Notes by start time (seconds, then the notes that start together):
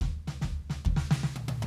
0.01 kick, snare, floor tom
0.27 snare, floor tom
0.41 kick, snare, floor tom
0.70 snare, floor tom
0.85 kick, floor tom
0.96 snare
1.11 snare
1.23 snare
1.36 high tom
1.48 high tom
1.62 floor tom